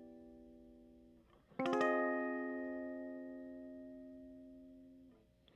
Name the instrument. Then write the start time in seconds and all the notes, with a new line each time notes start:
electric guitar
1.60 C4
1.66 F4
1.73 G#4
1.81 D#5